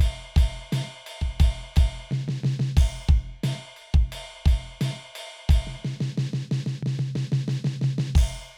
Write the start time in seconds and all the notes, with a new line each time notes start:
0.01 kick, ride
0.38 kick, ride
0.74 snare, ride
1.08 ride
1.23 kick
1.42 kick, ride
1.78 kick, ride
2.13 snare, floor tom
2.30 snare, floor tom
2.45 snare, floor tom
2.53 hi-hat pedal
2.61 snare, floor tom
2.79 kick, crash, ride
3.11 kick, snare
3.45 snare, ride
3.78 ride
3.96 kick
4.14 ride
4.48 kick, ride
4.83 snare, ride
5.17 ride
5.51 kick, ride
5.69 snare
5.87 snare
6.02 snare
6.20 snare
6.35 snare
6.53 snare
6.68 snare
6.85 snare, floor tom
7.01 snare, floor tom
7.17 snare, floor tom
7.34 snare, floor tom
7.50 snare, floor tom, hi-hat pedal
7.66 snare, floor tom
7.83 snare, floor tom
8.00 snare, floor tom
8.17 kick, crash, ride